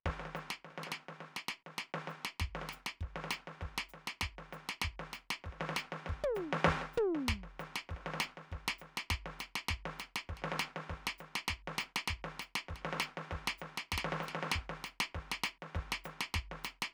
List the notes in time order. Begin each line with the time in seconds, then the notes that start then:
0.05 kick, snare
0.13 snare
0.19 snare
0.25 snare
0.35 snare, hi-hat pedal
0.50 snare
0.64 snare
0.70 snare
0.75 snare
0.78 snare
0.83 snare
0.87 snare
0.92 snare
1.08 snare
1.20 snare
1.36 snare
1.48 snare
1.66 snare
1.78 snare
1.94 snare
2.07 snare, hi-hat pedal
2.25 snare
2.40 kick, snare
2.46 kick
2.55 snare
2.61 snare
2.69 snare, hi-hat pedal
2.86 snare
3.01 kick, snare
3.16 snare
3.24 snare
3.31 snare, hi-hat pedal
3.47 snare
3.61 kick, snare
3.78 snare
3.89 hi-hat pedal
3.94 snare
4.07 snare
4.21 kick, snare
4.38 snare
4.52 snare, hi-hat pedal
4.69 snare
4.81 kick, snare
4.99 snare
5.13 snare, hi-hat pedal
5.30 snare
5.44 kick, snare
5.52 snare
5.60 snare
5.69 snare
5.76 snare, hi-hat pedal
5.92 snare
6.06 kick, snare
6.23 high tom
6.35 snare, hi-hat pedal
6.53 snare
6.64 kick, snare
6.81 snare
6.93 hi-hat pedal, mid tom
7.15 snare
7.28 kick, snare
7.34 kick
7.43 snare
7.59 snare, hi-hat pedal
7.76 snare
7.89 kick, snare
7.96 snare
8.01 snare
8.06 snare
8.14 snare
8.20 snare, hi-hat pedal
8.37 snare
8.52 kick, snare
8.68 snare
8.78 snare, hi-hat pedal
8.97 snare
9.10 kick, snare
9.26 snare
9.39 snare, hi-hat pedal
9.55 snare
9.68 kick, snare
9.85 snare
9.99 snare, hi-hat pedal
10.16 snare
10.29 kick, snare
10.37 snare
10.42 snare
10.44 snare
10.52 snare
10.59 snare, hi-hat pedal
10.76 snare
10.89 kick, snare
11.07 snare
11.18 snare, hi-hat pedal
11.35 snare
11.48 kick, snare
11.67 snare
11.78 snare, hi-hat pedal
11.96 snare
12.07 kick, snare
12.24 snare
12.39 snare, hi-hat pedal
12.55 snare
12.68 kick, snare
12.76 snare
12.81 snare
12.84 snare
12.93 snare
13.00 snare, hi-hat pedal
13.17 snare
13.31 kick, snare
13.47 snare
13.58 snare, hi-hat pedal
13.77 snare
13.92 kick, snare
13.98 snare
14.04 snare
14.12 snare
14.20 snare, hi-hat pedal
14.28 snare
14.35 snare
14.43 snare
14.51 kick, snare
14.69 snare
14.84 snare, hi-hat pedal
15.00 snare
15.14 kick, snare
15.31 snare
15.43 snare, hi-hat pedal
15.62 snare
15.75 kick, snare
15.92 snare
16.04 snare, hi-hat pedal
16.20 snare
16.34 kick, snare
16.51 snare
16.64 snare, hi-hat pedal
16.82 snare